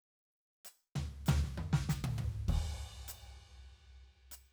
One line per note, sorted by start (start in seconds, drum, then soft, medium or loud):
0.65 percussion medium
0.95 snare medium
0.95 floor tom medium
1.26 snare medium
1.26 floor tom loud
1.26 percussion medium
1.44 snare soft
1.57 mid tom medium
1.73 snare medium
1.89 snare medium
1.89 percussion medium
2.04 high tom loud
2.18 floor tom medium
2.35 kick soft
2.48 kick medium
2.48 crash medium
3.08 percussion medium
4.31 percussion medium